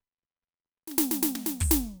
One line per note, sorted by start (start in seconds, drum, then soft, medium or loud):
0.87 snare soft
0.91 snare soft
0.98 snare loud
1.11 snare medium
1.23 snare loud
1.35 snare medium
1.46 snare medium
1.60 open hi-hat loud
1.60 kick medium
1.71 snare loud
1.71 hi-hat pedal medium